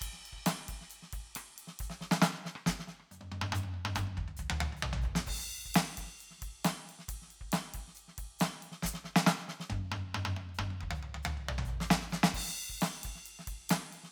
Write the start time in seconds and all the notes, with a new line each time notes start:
0.01 kick, hi-hat pedal, ride
0.08 kick
0.13 snare
0.20 snare
0.26 ride
0.33 kick
0.38 kick
0.46 snare, hi-hat pedal, ride
0.68 kick, ride
0.74 kick
0.81 snare
0.90 hi-hat pedal, ride
1.02 snare
1.13 kick, ride
1.20 kick
1.35 cross-stick, hi-hat pedal, ride
1.58 ride
1.67 snare
1.79 kick, hi-hat pedal, ride
1.88 kick, snare
2.01 snare
2.11 snare
2.22 snare, hi-hat pedal
2.33 snare
2.45 snare
2.55 cross-stick
2.66 kick, snare, hi-hat pedal
2.74 kick
2.79 snare
2.88 snare
3.00 cross-stick
3.11 hi-hat pedal, high tom
3.21 high tom
3.32 high tom
3.42 high tom
3.52 hi-hat pedal, high tom
3.63 high tom
3.74 high tom
3.85 high tom
3.95 kick, hi-hat pedal, high tom
4.03 kick, high tom
4.17 kick, mid tom
4.28 kick, mid tom
4.37 kick, hi-hat pedal, mid tom
4.50 mid tom
4.61 mid tom
4.72 mid tom
4.77 hi-hat pedal
4.83 floor tom
4.93 floor tom
5.02 kick, floor tom, hi-hat pedal
5.12 kick, snare
5.26 kick, hi-hat pedal, crash
5.39 kick, cross-stick
5.66 kick
5.71 kick, ride
5.76 snare, hi-hat pedal
5.84 snare
5.97 kick, ride
6.04 kick, snare
6.19 hi-hat pedal, ride
6.31 snare
6.38 kick, snare
6.42 ride
6.49 kick
6.64 snare, hi-hat pedal, ride
6.89 ride
6.99 snare
7.08 kick, hi-hat pedal, ride
7.16 kick
7.22 snare
7.27 snare, ride
7.41 kick
7.47 kick
7.52 snare, hi-hat pedal, ride
7.64 snare
7.74 kick, ride
7.81 kick
7.88 snare
7.95 hi-hat pedal, ride
8.08 snare
8.18 kick, ride
8.25 kick
8.39 snare, hi-hat pedal, ride
8.63 ride
8.72 snare
8.83 kick, snare, hi-hat pedal
8.91 kick, snare
9.04 snare
9.16 snare
9.27 snare
9.39 snare
9.48 snare
9.60 snare
9.70 kick, high tom
9.79 kick
9.92 high tom
10.15 high tom
10.25 high tom
10.37 high tom
10.49 high tom
10.55 hi-hat pedal
10.59 kick, high tom
10.70 high tom
10.81 kick, mid tom
10.95 hi-hat pedal
11.03 mid tom
11.15 mid tom
11.23 hi-hat pedal, mid tom
11.37 mid tom
11.49 floor tom
11.58 kick, floor tom
11.65 hi-hat pedal
11.69 floor tom
11.81 snare
11.86 hi-hat pedal
11.91 snare
12.01 snare
12.10 snare, hi-hat pedal
12.23 snare
12.34 kick, hi-hat pedal, crash
12.41 kick
12.46 kick, snare
12.70 kick
12.75 kick
12.81 snare, hi-hat pedal, ride
13.03 kick, ride
13.11 kick, snare
13.25 hi-hat pedal, ride
13.39 snare
13.47 kick, ride
13.54 kick
13.69 snare, hi-hat pedal, ride
13.93 ride
14.03 snare